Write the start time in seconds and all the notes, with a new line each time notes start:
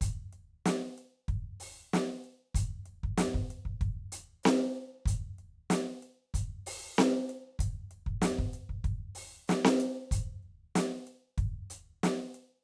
0.01 closed hi-hat, kick
0.33 closed hi-hat
0.66 closed hi-hat, snare
0.98 closed hi-hat
1.28 kick, closed hi-hat
1.60 open hi-hat
1.94 snare, hi-hat pedal, open hi-hat
2.24 closed hi-hat
2.55 closed hi-hat, kick
2.86 closed hi-hat
3.03 kick
3.18 closed hi-hat, snare
3.34 kick
3.50 closed hi-hat
3.65 kick
3.81 kick, closed hi-hat
4.12 open hi-hat
4.43 snare, hi-hat pedal
5.06 closed hi-hat, kick
5.39 closed hi-hat
5.70 closed hi-hat, snare
6.03 closed hi-hat
6.34 closed hi-hat, kick
6.66 open hi-hat
6.97 snare, hi-hat pedal
7.29 closed hi-hat
7.59 kick, closed hi-hat
7.91 closed hi-hat
8.06 kick
8.22 closed hi-hat, snare
8.39 kick
8.53 closed hi-hat
8.69 kick
8.84 kick, closed hi-hat
9.15 open hi-hat
9.48 closed hi-hat, snare, hi-hat pedal
9.65 snare
9.80 closed hi-hat
10.11 closed hi-hat, kick
10.43 closed hi-hat
10.76 closed hi-hat, snare
11.07 closed hi-hat
11.38 kick, closed hi-hat
11.70 open hi-hat
12.03 open hi-hat, snare, hi-hat pedal
12.34 closed hi-hat